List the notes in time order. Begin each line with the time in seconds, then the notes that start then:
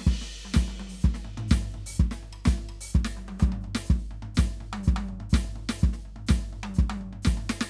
0.01 snare, hi-hat pedal
0.07 kick, crash
0.22 snare
0.46 high tom
0.54 kick, snare, hi-hat pedal
0.69 high tom
0.80 high tom
0.90 open hi-hat
1.01 kick, hi-hat pedal, high tom
1.15 snare
1.25 floor tom
1.38 floor tom
1.49 kick, snare, hi-hat pedal
1.63 floor tom
1.71 hi-hat pedal
1.75 floor tom
1.87 open hi-hat
1.97 kick, floor tom, hi-hat pedal
2.12 snare
2.19 hi-hat pedal
2.23 floor tom
2.33 floor tom
2.45 kick, snare, hi-hat pedal
2.58 floor tom
2.66 hi-hat pedal, floor tom
2.81 open hi-hat
2.91 floor tom, hi-hat pedal
2.96 kick
3.05 snare
3.18 high tom
3.29 high tom
3.40 kick, hi-hat pedal, high tom
3.53 floor tom
3.61 floor tom, hi-hat pedal
3.75 snare
3.86 hi-hat pedal
3.91 kick
3.99 open hi-hat
4.12 floor tom
4.23 floor tom
4.35 snare, hi-hat pedal
4.39 kick
4.61 floor tom
4.74 high tom
4.84 floor tom, hi-hat pedal
4.88 kick
4.97 high tom
5.05 floor tom, hi-hat pedal
5.21 floor tom
5.30 kick, hi-hat pedal
5.35 snare
5.45 floor tom
5.52 hi-hat pedal
5.56 floor tom
5.70 snare
5.79 floor tom, hi-hat pedal
5.84 kick
5.94 snare
6.01 hi-hat pedal
6.06 floor tom
6.17 floor tom
6.27 kick, snare, hi-hat pedal
6.42 floor tom
6.49 hi-hat pedal
6.53 floor tom
6.64 high tom
6.75 floor tom, hi-hat pedal
6.79 kick
6.90 high tom
6.97 hi-hat pedal
7.02 floor tom
7.13 floor tom
7.23 snare, hi-hat pedal
7.28 kick
7.38 floor tom
7.45 hi-hat pedal
7.50 snare
7.62 snare